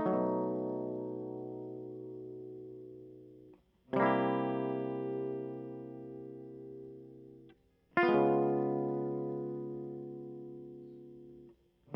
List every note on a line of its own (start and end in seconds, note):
0.00 3.52 A3
0.07 3.58 F#3
0.15 3.59 B2
3.94 7.54 C3
3.94 7.57 G3
4.00 7.54 A#3
4.00 7.56 E4
7.97 11.55 F4
8.03 11.52 B3
8.09 11.53 G#3
8.16 11.53 C#3